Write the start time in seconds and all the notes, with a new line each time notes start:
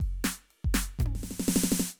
0.00 kick, ride
0.24 snare, ride
0.50 ride
0.64 kick
0.74 snare, ride
0.99 kick, floor tom, hi-hat pedal
1.06 high tom
1.15 snare
1.23 snare, hi-hat pedal
1.31 snare
1.39 snare
1.47 snare, hi-hat pedal
1.56 snare
1.63 snare
1.71 snare, hi-hat pedal
1.79 snare